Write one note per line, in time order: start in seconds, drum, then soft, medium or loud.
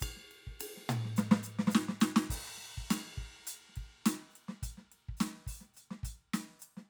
0.01 kick soft
0.01 hi-hat pedal medium
0.01 ride bell loud
0.08 kick soft
0.12 kick soft
0.17 snare soft
0.32 ride soft
0.48 kick soft
0.48 snare soft
0.61 hi-hat pedal medium
0.61 ride loud
0.78 snare soft
0.90 hi-hat pedal medium
0.90 mid tom loud
1.06 snare soft
1.17 snare medium
1.17 hi-hat pedal loud
1.32 snare loud
1.44 hi-hat pedal loud
1.60 snare medium
1.68 snare medium
1.68 hi-hat pedal medium
1.76 snare loud
1.89 snare medium
2.01 snare loud
2.01 hi-hat pedal loud
2.17 snare loud
2.31 kick soft
2.31 hi-hat pedal loud
2.31 crash medium
2.37 kick soft
2.48 cross-stick soft
2.58 snare soft
2.78 kick soft
2.91 snare loud
2.91 hi-hat pedal loud
2.91 ride bell loud
3.18 kick soft
3.24 kick soft
3.40 snare soft
3.45 closed hi-hat loud
3.45 hi-hat pedal soft
3.70 snare soft
3.77 kick soft
3.77 closed hi-hat soft
4.07 closed hi-hat loud
4.07 snare loud
4.31 hi-hat pedal soft
4.36 closed hi-hat soft
4.49 snare soft
4.64 closed hi-hat medium
4.64 kick soft
4.69 kick soft
4.78 snare soft
4.93 closed hi-hat soft
5.10 kick soft
5.18 closed hi-hat medium
5.18 snare loud
5.18 hi-hat pedal soft
5.34 snare soft
5.48 open hi-hat medium
5.48 kick soft
5.62 snare soft
5.75 closed hi-hat medium
5.75 hi-hat pedal soft
5.92 snare soft
6.04 closed hi-hat medium
6.04 kick soft
6.10 kick soft
6.35 closed hi-hat medium
6.35 snare medium
6.60 closed hi-hat medium
6.60 hi-hat pedal soft
6.78 snare soft